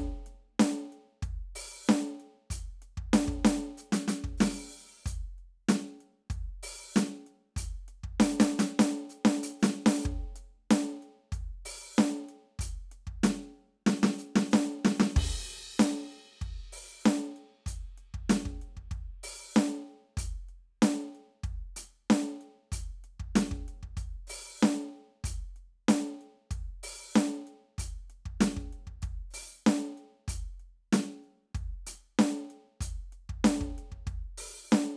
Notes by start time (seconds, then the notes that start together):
0.27 closed hi-hat
0.60 closed hi-hat, snare
0.93 closed hi-hat
1.23 kick, closed hi-hat
1.56 open hi-hat
1.88 snare, closed hi-hat, hi-hat pedal
2.21 closed hi-hat
2.51 closed hi-hat, kick
2.83 closed hi-hat
2.98 kick
3.14 closed hi-hat, snare
3.29 kick
3.46 open hi-hat, snare
3.78 hi-hat pedal
3.93 closed hi-hat, snare
4.09 closed hi-hat, snare
4.25 kick
4.38 open hi-hat, snare, hi-hat pedal
5.07 closed hi-hat, kick, hi-hat pedal
5.39 closed hi-hat
5.69 closed hi-hat, snare
6.01 closed hi-hat
6.31 kick, closed hi-hat
6.64 open hi-hat
6.96 closed hi-hat, snare, hi-hat pedal
7.27 closed hi-hat
7.57 closed hi-hat, kick
7.89 closed hi-hat
8.04 kick
8.21 open hi-hat, snare
8.31 hi-hat pedal
8.41 closed hi-hat, snare
8.58 closed hi-hat, snare, hi-hat pedal
8.80 closed hi-hat, snare
9.10 hi-hat pedal
9.26 snare
9.44 closed hi-hat
9.60 snare, hi-hat pedal
9.65 closed hi-hat
9.87 open hi-hat, snare
10.04 kick, hi-hat pedal
10.37 closed hi-hat
10.71 closed hi-hat, snare
11.03 closed hi-hat
11.33 kick, closed hi-hat
11.66 open hi-hat
11.99 snare, hi-hat pedal, open hi-hat
12.29 closed hi-hat
12.60 closed hi-hat, kick
12.92 closed hi-hat
13.08 kick
13.24 closed hi-hat, snare
13.87 snare, hi-hat pedal
14.04 snare
14.19 hi-hat pedal
14.36 snare
14.51 snare, hi-hat pedal
14.86 snare
15.01 snare
15.17 kick, crash
15.80 closed hi-hat, snare
16.13 closed hi-hat
16.42 kick, closed hi-hat
16.73 open hi-hat
17.05 snare, closed hi-hat, hi-hat pedal
17.37 closed hi-hat
17.67 closed hi-hat, kick
17.98 closed hi-hat
18.15 kick
18.30 closed hi-hat, snare
18.46 kick
18.62 closed hi-hat
18.78 kick
18.92 kick, closed hi-hat
19.24 open hi-hat
19.57 open hi-hat, snare, hi-hat pedal
19.89 closed hi-hat
20.18 closed hi-hat, kick
20.49 closed hi-hat
20.83 closed hi-hat, snare
21.16 closed hi-hat
21.44 kick, closed hi-hat
21.77 open hi-hat
22.11 snare, hi-hat pedal, open hi-hat
22.42 closed hi-hat
22.73 closed hi-hat, kick
23.05 closed hi-hat
23.20 kick
23.36 closed hi-hat, snare
23.52 kick
23.69 closed hi-hat
23.84 kick
23.98 closed hi-hat, kick
24.28 open hi-hat, hi-hat pedal
24.63 snare, hi-hat pedal
25.25 closed hi-hat, kick
25.57 closed hi-hat
25.89 closed hi-hat, snare
26.22 closed hi-hat
26.52 kick, closed hi-hat
26.84 open hi-hat
27.16 open hi-hat, snare, hi-hat pedal
27.48 closed hi-hat
27.79 closed hi-hat, kick
28.11 closed hi-hat
28.26 kick
28.41 closed hi-hat, snare
28.57 kick
28.73 closed hi-hat
28.88 kick
29.03 kick, closed hi-hat
29.31 open hi-hat, hi-hat pedal
29.67 snare, hi-hat pedal
29.98 closed hi-hat
30.29 closed hi-hat, kick
30.60 closed hi-hat
30.93 closed hi-hat, snare
31.25 closed hi-hat
31.55 kick, closed hi-hat
31.88 open hi-hat
32.20 open hi-hat, snare, hi-hat pedal
32.51 closed hi-hat
32.81 closed hi-hat, kick
33.13 closed hi-hat
33.30 kick
33.45 closed hi-hat, snare
33.62 kick
33.79 closed hi-hat
33.93 kick
34.08 kick, closed hi-hat
34.38 open hi-hat
34.72 snare, hi-hat pedal